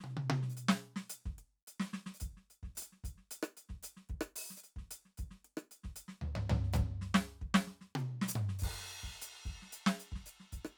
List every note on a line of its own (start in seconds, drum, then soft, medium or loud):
0.01 snare soft
0.01 high tom medium
0.10 snare soft
0.17 high tom medium
0.30 high tom loud
0.43 snare soft
0.50 hi-hat pedal soft
0.57 closed hi-hat medium
0.69 snare loud
0.96 snare medium
1.10 closed hi-hat medium
1.26 kick soft
1.26 snare soft
1.39 closed hi-hat soft
1.68 closed hi-hat medium
1.80 snare medium
1.94 snare medium
2.06 snare medium
2.14 hi-hat pedal soft
2.20 closed hi-hat medium
2.20 kick soft
2.37 snare soft
2.51 closed hi-hat soft
2.63 kick soft
2.63 snare soft
2.76 closed hi-hat medium
2.76 hi-hat pedal soft
2.82 closed hi-hat medium
2.93 snare soft
3.04 closed hi-hat soft
3.04 kick soft
3.18 snare soft
3.31 closed hi-hat medium
3.43 cross-stick medium
3.57 closed hi-hat soft
3.69 kick soft
3.69 snare soft
3.83 closed hi-hat medium
3.83 hi-hat pedal medium
3.97 snare soft
4.09 kick soft
4.09 closed hi-hat soft
4.21 cross-stick medium
4.36 open hi-hat loud
4.51 snare soft
4.57 hi-hat pedal medium
4.64 closed hi-hat soft
4.76 kick soft
4.76 snare soft
4.81 kick soft
4.91 closed hi-hat medium
5.06 snare soft
5.18 closed hi-hat soft
5.18 kick soft
5.28 kick soft
5.28 snare soft
5.45 closed hi-hat soft
5.57 cross-stick medium
5.71 closed hi-hat soft
5.84 kick soft
5.84 snare soft
5.90 kick soft
5.96 closed hi-hat medium
6.09 snare soft
6.22 floor tom medium
6.36 floor tom medium
6.50 floor tom loud
6.64 snare soft
6.73 hi-hat pedal medium
6.73 floor tom loud
6.80 kick medium
6.87 kick soft
7.02 snare soft
7.15 snare loud
7.20 hi-hat pedal soft
7.28 snare soft
7.41 kick soft
7.41 snare soft
7.55 snare loud
7.67 snare soft
7.81 snare soft
7.96 hi-hat pedal soft
7.96 high tom loud
8.22 snare medium
8.28 snare soft
8.28 hi-hat pedal loud
8.36 mid tom loud
8.49 snare soft
8.59 kick medium
8.59 hi-hat pedal medium
8.64 crash medium
8.80 snare soft
8.89 closed hi-hat soft
9.04 kick soft
9.09 snare soft
9.17 hi-hat pedal soft
9.22 closed hi-hat medium
9.46 kick soft
9.46 closed hi-hat soft
9.51 kick soft
9.63 snare soft
9.73 closed hi-hat medium
9.87 snare loud
10.00 closed hi-hat soft
10.12 kick soft
10.12 snare soft
10.26 hi-hat pedal medium
10.40 snare soft
10.53 closed hi-hat soft
10.53 kick soft
10.65 cross-stick medium